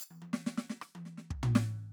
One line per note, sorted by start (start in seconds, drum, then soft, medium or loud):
0.01 percussion loud
0.11 high tom soft
0.22 high tom medium
0.34 snare medium
0.47 snare medium
0.58 snare medium
0.70 snare medium
0.82 cross-stick medium
0.95 high tom medium
1.06 snare soft
1.18 snare soft
1.31 kick medium
1.43 floor tom loud
1.56 snare loud